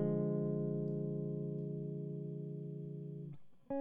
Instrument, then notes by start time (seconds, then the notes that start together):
electric guitar
0.00 D3 F3 G#3